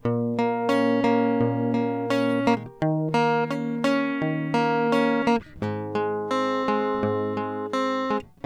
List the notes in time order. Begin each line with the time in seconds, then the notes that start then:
0.06 A#2
0.40 A#3
0.70 C#4
1.05 A#3
1.42 A#2
1.75 A#3
2.11 C#4
2.58 D#3
2.83 D#3
3.15 A#3
3.52 C#4
3.85 C#4
4.23 D#3
4.55 A#3
4.93 C#4
5.28 A#3
5.63 G#2 C4
5.73 G#3
5.96 G#3
6.32 C4
6.69 G#3
7.04 G#2
7.38 G#3
7.75 C4
8.12 G#3